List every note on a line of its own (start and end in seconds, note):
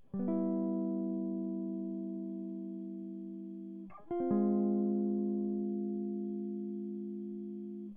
0.14 3.96 G3
0.19 3.88 B3
0.28 3.88 E4
4.11 7.90 F4
4.20 7.22 C4
4.31 7.96 G#3